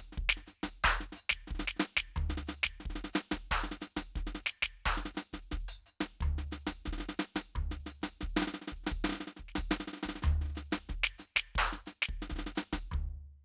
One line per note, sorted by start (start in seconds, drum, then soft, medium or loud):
0.01 snare soft
0.06 kick soft
0.18 snare loud
0.25 snare soft
0.35 snare soft
0.35 hi-hat pedal soft
0.52 kick soft
0.52 snare medium
0.72 kick soft
0.72 percussion loud
0.89 snare soft
1.01 snare soft
1.01 hi-hat pedal medium
1.18 kick soft
1.18 snare medium
1.36 kick soft
1.36 snare soft
1.43 snare soft
1.48 snare medium
1.56 snare medium
1.65 snare soft
1.68 snare medium
1.68 hi-hat pedal medium
1.85 kick soft
1.85 snare medium
2.05 kick soft
2.05 floor tom medium
2.18 snare soft
2.26 snare soft
2.36 snare medium
2.36 hi-hat pedal medium
2.52 kick soft
2.52 snare medium
2.69 snare soft
2.74 kick soft
2.79 snare soft
2.84 snare soft
2.93 snare soft
3.02 snare medium
3.02 hi-hat pedal medium
3.20 kick soft
3.20 snare medium
3.40 kick soft
3.40 percussion medium
3.52 snare soft
3.60 snare soft
3.69 snare soft
3.69 hi-hat pedal medium
3.85 kick soft
3.85 snare medium
4.04 kick soft
4.04 snare soft
4.23 snare soft
4.35 snare medium
4.35 hi-hat pedal medium
4.51 kick soft
4.51 snare medium
4.74 kick soft
4.74 percussion medium
4.86 snare soft
4.94 snare soft
5.03 snare soft
5.03 hi-hat pedal soft
5.06 snare medium
5.22 kick soft
5.22 snare soft
5.40 kick soft
5.40 snare soft
5.57 closed hi-hat medium
5.75 snare soft
5.75 hi-hat pedal soft
5.89 kick soft
5.89 snare medium
6.09 kick soft
6.09 floor tom loud
6.27 snare soft
6.40 snare soft
6.40 hi-hat pedal medium
6.55 kick soft
6.55 snare medium
6.74 kick soft
6.74 snare soft
6.81 snare soft
6.86 snare soft
6.88 snare soft
6.97 snare medium
7.08 snare medium
7.08 hi-hat pedal soft
7.24 kick soft
7.24 snare medium
7.44 kick soft
7.44 floor tom medium
7.60 snare soft
7.75 snare soft
7.75 hi-hat pedal medium
7.90 kick soft
7.90 snare medium
8.09 kick soft
8.09 snare soft
8.25 snare loud
8.28 snare medium
8.30 snare medium
8.36 snare medium
8.42 snare soft
8.42 hi-hat pedal medium
8.50 snare soft
8.56 snare medium
8.61 kick soft
8.72 snare soft
8.75 snare medium
8.80 kick soft
8.93 snare medium
8.98 snare medium
9.01 snare medium
9.03 snare soft
9.09 snare soft
9.09 hi-hat pedal soft
9.16 snare soft
9.25 kick soft
9.25 snare soft
9.37 snare soft
9.44 kick soft
9.44 snare medium
9.60 snare medium
9.69 snare medium
9.76 snare soft
9.76 hi-hat pedal soft
9.82 snare soft
9.86 snare soft
9.91 kick soft
9.91 snare medium
9.97 snare medium
10.04 snare soft
10.11 kick soft
10.11 snare soft
10.11 floor tom loud
10.30 snare soft
10.34 snare soft
10.38 snare soft
10.44 snare soft
10.44 hi-hat pedal medium
10.60 kick soft
10.60 snare medium
10.78 kick soft
10.78 snare soft
10.92 snare medium
11.07 snare soft
11.07 hi-hat pedal medium
11.24 kick soft
11.24 snare loud
11.44 kick soft
11.44 percussion medium
11.61 snare soft
11.75 snare soft
11.75 hi-hat pedal medium
11.91 snare medium
11.97 kick soft
12.11 snare soft
12.18 kick soft
12.18 snare soft
12.24 snare soft
12.27 snare medium
12.35 snare soft
12.44 snare medium
12.44 hi-hat pedal medium
12.61 kick soft
12.61 snare medium
12.80 kick soft
12.80 floor tom medium